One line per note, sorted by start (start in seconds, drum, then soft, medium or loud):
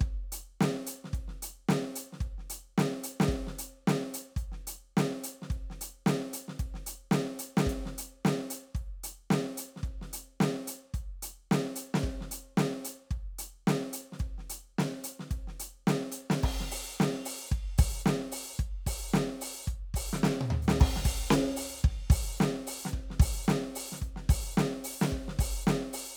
0.01 kick loud
0.01 closed hi-hat soft
0.32 closed hi-hat loud
0.61 snare loud
0.87 closed hi-hat loud
1.05 snare soft
1.13 kick medium
1.13 closed hi-hat soft
1.28 snare soft
1.43 closed hi-hat loud
1.69 snare loud
1.96 closed hi-hat loud
2.13 snare soft
2.21 kick medium
2.21 closed hi-hat soft
2.38 snare soft
2.50 closed hi-hat loud
2.78 snare loud
3.04 closed hi-hat loud
3.20 snare loud
3.29 kick medium
3.29 closed hi-hat soft
3.47 snare soft
3.59 closed hi-hat loud
3.88 snare loud
4.14 closed hi-hat loud
4.37 closed hi-hat medium
4.37 kick medium
4.52 snare soft
4.67 closed hi-hat loud
4.97 snare loud
5.24 closed hi-hat loud
5.42 snare soft
5.50 kick medium
5.50 closed hi-hat soft
5.70 snare soft
5.81 closed hi-hat loud
6.06 snare loud
6.34 closed hi-hat loud
6.48 snare medium
6.60 kick medium
6.60 closed hi-hat medium
6.74 snare soft
6.87 closed hi-hat loud
7.11 snare loud
7.39 closed hi-hat loud
7.57 snare loud
7.66 kick medium
7.66 closed hi-hat medium
7.86 snare medium
7.98 closed hi-hat loud
8.25 snare loud
8.50 closed hi-hat loud
8.75 kick medium
8.75 closed hi-hat soft
9.04 closed hi-hat loud
9.31 snare loud
9.58 closed hi-hat loud
9.76 snare soft
9.83 kick medium
9.83 closed hi-hat soft
10.02 snare soft
10.13 closed hi-hat loud
10.41 snare loud
10.68 closed hi-hat loud
10.94 closed hi-hat soft
10.94 kick medium
11.23 closed hi-hat loud
11.51 snare loud
11.76 closed hi-hat loud
11.94 snare loud
12.04 kick medium
12.21 snare soft
12.31 closed hi-hat loud
12.58 snare loud
12.85 closed hi-hat loud
13.11 kick medium
13.11 closed hi-hat soft
13.39 closed hi-hat loud
13.67 snare loud
13.93 closed hi-hat loud
14.12 snare soft
14.20 kick medium
14.20 closed hi-hat soft
14.38 snare soft
14.50 closed hi-hat loud
14.79 snare loud
15.04 closed hi-hat loud
15.20 snare medium
15.31 kick medium
15.31 closed hi-hat medium
15.48 snare soft
15.60 closed hi-hat loud
15.87 snare loud
16.12 closed hi-hat loud
16.30 snare loud
16.38 hi-hat pedal soft
16.43 kick loud
16.43 crash loud
16.60 snare medium
16.72 open hi-hat loud
16.96 hi-hat pedal soft
17.00 snare loud
17.26 open hi-hat loud
17.49 kick medium
17.49 hi-hat pedal soft
17.78 open hi-hat loud
17.78 kick loud
18.02 hi-hat pedal soft
18.06 snare loud
18.32 open hi-hat loud
18.57 kick medium
18.57 hi-hat pedal soft
18.87 open hi-hat loud
18.87 kick medium
19.11 snare loud
19.11 hi-hat pedal soft
19.41 open hi-hat loud
19.65 kick medium
19.65 hi-hat pedal soft
19.94 open hi-hat loud
19.94 kick medium
20.13 snare medium
20.13 hi-hat pedal soft
20.24 snare loud
20.33 hi-hat pedal soft
20.41 high tom loud
20.51 floor tom loud
20.62 hi-hat pedal medium
20.68 snare loud
20.80 kick loud
20.80 crash loud
20.96 snare medium
21.05 open hi-hat loud
21.05 kick loud
21.29 snare loud
21.29 hi-hat pedal medium
21.57 open hi-hat loud
21.81 kick loud
21.81 hi-hat pedal soft
21.88 snare soft
21.93 snare soft
21.97 snare soft
22.10 open hi-hat loud
22.10 kick loud
22.37 snare loud
22.37 hi-hat pedal medium
22.67 open hi-hat loud
22.85 snare medium
22.89 kick medium
22.89 hi-hat pedal medium
23.10 snare soft
23.20 open hi-hat loud
23.20 kick loud
23.45 snare loud
23.45 hi-hat pedal medium
23.76 open hi-hat loud
23.92 snare soft
23.98 kick medium
23.98 hi-hat pedal medium
24.02 closed hi-hat soft
24.16 snare soft
24.29 open hi-hat loud
24.29 kick loud
24.54 snare loud
24.54 hi-hat pedal medium
24.84 open hi-hat loud
25.02 snare loud
25.08 hi-hat pedal medium
25.12 kick medium
25.12 closed hi-hat soft
25.28 snare medium
25.39 open hi-hat loud
25.39 kick loud
25.63 hi-hat pedal soft
25.67 snare loud
25.93 open hi-hat loud